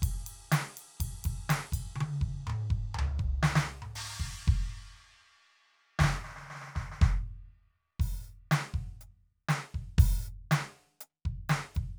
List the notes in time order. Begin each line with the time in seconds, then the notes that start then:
0.02 kick, ride
0.27 ride
0.52 snare, ride
0.77 ride
1.00 kick, ride
1.24 kick, ride
1.49 snare, ride
1.72 kick, ride bell
1.96 high tom
2.01 high tom
2.21 kick
2.47 mid tom
2.50 mid tom
2.70 kick
2.95 floor tom
2.99 floor tom
3.19 kick
3.43 snare
3.56 snare
3.67 high tom
3.82 mid tom
3.96 crash
4.20 kick
4.48 kick, snare
5.99 kick, snare
6.04 snare
6.09 snare
6.18 snare
6.23 snare
6.29 snare
6.33 snare
6.36 snare
6.41 snare
6.46 snare
6.50 snare
6.55 snare
6.59 snare
6.62 snare
6.67 snare
6.75 kick, snare
6.80 snare
6.85 snare
6.92 snare
6.97 snare
7.01 kick, snare
8.00 open hi-hat, kick
8.25 hi-hat pedal
8.51 closed hi-hat, snare
8.74 kick
9.01 closed hi-hat
9.49 closed hi-hat, snare
9.74 kick
9.98 open hi-hat, kick
10.26 hi-hat pedal
10.51 closed hi-hat, snare
10.77 closed hi-hat
11.01 closed hi-hat
11.25 kick
11.49 closed hi-hat, snare
11.75 closed hi-hat, kick